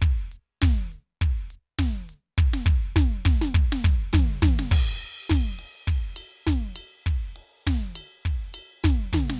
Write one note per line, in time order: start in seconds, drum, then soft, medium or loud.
0.01 kick loud
0.01 hi-hat pedal medium
0.31 closed hi-hat loud
0.62 kick loud
0.62 snare loud
0.92 closed hi-hat loud
1.21 kick loud
1.50 closed hi-hat loud
1.79 kick medium
1.79 snare loud
2.09 closed hi-hat loud
2.38 kick loud
2.53 snare loud
2.66 open hi-hat loud
2.66 kick loud
2.96 open hi-hat loud
2.96 kick loud
2.96 snare loud
3.25 open hi-hat loud
3.25 kick loud
3.25 snare loud
3.41 snare loud
3.54 open hi-hat medium
3.54 kick loud
3.72 snare loud
3.84 open hi-hat loud
3.84 kick loud
4.13 kick loud
4.13 snare loud
4.13 high tom loud
4.42 kick loud
4.42 snare loud
4.42 high tom loud
4.59 snare loud
4.71 kick loud
4.71 hi-hat pedal medium
4.71 crash loud
5.01 ride medium
5.28 kick loud
5.28 snare loud
5.28 hi-hat pedal medium
5.59 ride loud
5.86 kick loud
5.86 hi-hat pedal soft
5.86 ride soft
6.16 ride bell loud
6.45 kick medium
6.45 snare loud
6.45 hi-hat pedal medium
6.75 ride bell loud
7.04 kick loud
7.04 hi-hat pedal soft
7.04 ride soft
7.36 ride loud
7.66 kick medium
7.66 snare loud
7.66 hi-hat pedal medium
7.66 ride medium
7.95 ride bell loud
8.23 kick medium
8.23 hi-hat pedal soft
8.23 ride medium
8.54 ride bell loud
8.83 kick loud
8.83 snare loud
8.83 hi-hat pedal medium
8.83 ride bell medium
9.13 kick medium
9.13 snare loud
9.13 mid tom loud
9.30 snare loud